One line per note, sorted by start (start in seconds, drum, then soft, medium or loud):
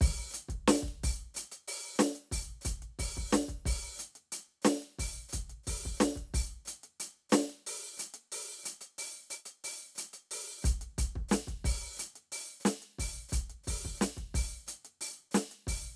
0.01 open hi-hat loud
0.01 kick loud
0.31 closed hi-hat loud
0.31 hi-hat pedal medium
0.49 kick medium
0.49 closed hi-hat medium
0.68 open hi-hat loud
0.68 snare loud
0.76 hi-hat pedal soft
0.83 kick medium
0.88 closed hi-hat soft
1.04 open hi-hat loud
1.04 kick medium
1.34 closed hi-hat loud
1.34 hi-hat pedal medium
1.52 closed hi-hat medium
1.68 open hi-hat loud
1.95 snare loud
1.95 hi-hat pedal medium
2.00 closed hi-hat loud
2.15 closed hi-hat medium
2.32 open hi-hat loud
2.32 kick medium
2.61 closed hi-hat loud
2.61 kick medium
2.61 hi-hat pedal medium
2.82 closed hi-hat soft
2.99 open hi-hat loud
2.99 kick medium
3.17 kick medium
3.30 closed hi-hat loud
3.30 snare loud
3.30 hi-hat pedal medium
3.48 kick medium
3.48 closed hi-hat medium
3.66 open hi-hat loud
3.66 kick medium
3.97 closed hi-hat loud
3.97 hi-hat pedal medium
4.15 closed hi-hat medium
4.32 open hi-hat loud
4.62 closed hi-hat loud
4.62 snare loud
4.62 hi-hat pedal soft
4.82 closed hi-hat soft
4.99 open hi-hat loud
4.99 kick medium
5.29 closed hi-hat loud
5.29 hi-hat pedal medium
5.33 kick medium
5.50 closed hi-hat medium
5.64 open hi-hat loud
5.64 kick medium
5.64 hi-hat pedal soft
5.85 kick medium
5.97 snare loud
5.97 hi-hat pedal medium
6.01 closed hi-hat loud
6.16 kick soft
6.16 closed hi-hat soft
6.34 open hi-hat loud
6.34 kick medium
6.65 closed hi-hat loud
6.65 hi-hat pedal medium
6.83 closed hi-hat medium
7.00 closed hi-hat loud
7.30 closed hi-hat loud
7.30 snare loud
7.30 hi-hat pedal medium
7.50 closed hi-hat soft
7.67 open hi-hat loud
7.97 closed hi-hat loud
7.97 hi-hat pedal medium
8.14 closed hi-hat medium
8.32 open hi-hat loud
8.63 closed hi-hat loud
8.63 hi-hat pedal medium
8.81 closed hi-hat medium
8.98 open hi-hat loud
9.30 open hi-hat loud
9.30 hi-hat pedal soft
9.46 closed hi-hat medium
9.64 open hi-hat loud
9.95 closed hi-hat loud
9.95 hi-hat pedal medium
10.13 closed hi-hat medium
10.31 open hi-hat loud
10.62 closed hi-hat loud
10.62 kick loud
10.62 hi-hat pedal medium
10.81 closed hi-hat medium
10.98 open hi-hat loud
10.98 kick medium
11.16 kick medium
11.29 closed hi-hat loud
11.29 snare loud
11.29 hi-hat pedal medium
11.48 kick medium
11.48 closed hi-hat medium
11.65 open hi-hat loud
11.65 kick medium
11.97 closed hi-hat loud
11.97 hi-hat pedal medium
12.16 closed hi-hat medium
12.32 open hi-hat loud
12.60 hi-hat pedal medium
12.65 closed hi-hat loud
12.65 snare loud
12.82 closed hi-hat medium
12.99 open hi-hat loud
12.99 kick medium
13.29 closed hi-hat loud
13.29 kick medium
13.29 hi-hat pedal medium
13.50 closed hi-hat medium
13.64 open hi-hat loud
13.64 kick medium
13.64 hi-hat pedal soft
13.85 kick medium
13.97 hi-hat pedal medium
14.01 closed hi-hat loud
14.01 snare loud
14.17 kick medium
14.17 closed hi-hat soft
14.33 open hi-hat loud
14.33 kick medium
14.33 hi-hat pedal soft
14.67 closed hi-hat loud
14.67 hi-hat pedal soft
14.85 closed hi-hat medium
15.01 open hi-hat loud
15.31 closed hi-hat loud
15.31 snare loud
15.31 hi-hat pedal medium
15.51 closed hi-hat medium
15.67 open hi-hat loud
15.67 kick medium